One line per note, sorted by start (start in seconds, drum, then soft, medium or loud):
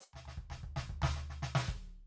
0.01 hi-hat pedal medium
0.13 snare soft
0.13 floor tom soft
0.25 snare soft
0.25 floor tom soft
0.37 kick soft
0.50 snare soft
0.50 floor tom medium
0.63 kick soft
0.76 snare medium
0.76 floor tom medium
0.89 kick soft
1.02 snare loud
1.02 floor tom loud
1.16 snare soft
1.30 snare soft
1.42 snare medium
1.55 snare loud
1.68 kick medium